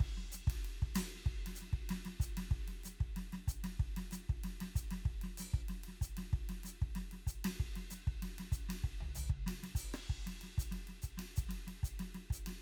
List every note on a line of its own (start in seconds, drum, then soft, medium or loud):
0.01 kick medium
0.01 ride medium
0.18 snare soft
0.33 snare soft
0.33 hi-hat pedal loud
0.48 kick medium
0.48 ride medium
0.66 ride medium
0.83 kick soft
0.96 snare medium
0.96 hi-hat pedal medium
0.96 ride loud
1.16 snare soft
1.27 kick soft
1.47 snare soft
1.47 ride medium
1.57 hi-hat pedal medium
1.62 snare soft
1.62 ride medium
1.74 kick soft
1.90 snare medium
1.90 ride medium
2.06 snare soft
2.06 ride medium
2.21 kick soft
2.21 hi-hat pedal medium
2.38 snare soft
2.38 ride medium
2.52 kick soft
2.69 snare soft
2.69 ride medium
2.85 snare soft
2.85 hi-hat pedal medium
2.85 ride medium
3.01 kick soft
3.17 snare soft
3.17 ride medium
3.34 snare soft
3.34 ride medium
3.49 kick soft
3.49 hi-hat pedal medium
3.65 snare soft
3.65 ride medium
3.81 kick soft
3.98 snare soft
3.98 ride medium
4.12 snare soft
4.12 hi-hat pedal medium
4.12 ride medium
4.30 kick soft
4.45 snare soft
4.45 ride medium
4.62 snare soft
4.62 ride medium
4.77 kick soft
4.77 hi-hat pedal medium
4.92 snare soft
4.92 ride medium
5.06 kick soft
5.23 snare soft
5.23 ride medium
5.39 snare soft
5.39 hi-hat pedal medium
5.39 ride medium
5.55 kick soft
5.70 snare soft
5.70 ride medium
5.85 ride medium
5.89 snare soft
6.02 kick soft
6.02 hi-hat pedal medium
6.18 snare soft
6.18 ride medium
6.34 kick soft
6.50 snare soft
6.50 ride medium
6.65 snare soft
6.65 hi-hat pedal medium
6.65 ride medium
6.83 kick soft
6.96 snare soft
6.96 ride medium
7.12 snare soft
7.12 ride medium
7.28 kick soft
7.28 hi-hat pedal medium
7.46 snare medium
7.46 ride loud
7.61 kick soft
7.77 snare soft
7.77 ride medium
7.91 snare soft
7.91 hi-hat pedal medium
7.91 ride medium
8.08 kick soft
8.23 snare soft
8.23 ride medium
8.39 snare soft
8.39 ride medium
8.53 kick soft
8.53 hi-hat pedal medium
8.70 snare soft
8.70 ride loud
8.85 kick soft
9.02 floor tom medium
9.02 high tom soft
9.16 floor tom medium
9.16 hi-hat pedal medium
9.16 high tom medium
9.31 kick soft
9.47 snare soft
9.47 ride loud
9.64 snare soft
9.64 ride medium
9.76 kick soft
9.76 hi-hat pedal medium
9.95 cross-stick medium
9.95 ride medium
10.11 kick soft
10.27 snare soft
10.27 ride medium
10.42 snare soft
10.42 ride medium
10.59 kick soft
10.59 hi-hat pedal medium
10.72 snare soft
10.72 ride medium
10.88 snare soft
10.88 ride medium
11.03 kick soft
11.03 hi-hat pedal medium
11.19 snare soft
11.19 ride medium
11.37 kick soft
11.37 hi-hat pedal medium
11.50 snare soft
11.50 ride medium
11.68 snare soft
11.68 ride medium
11.84 kick soft
11.84 hi-hat pedal medium
12.00 snare soft
12.00 ride medium
12.16 snare soft
12.16 ride medium
12.31 kick soft
12.31 hi-hat pedal medium
12.47 snare soft
12.47 ride medium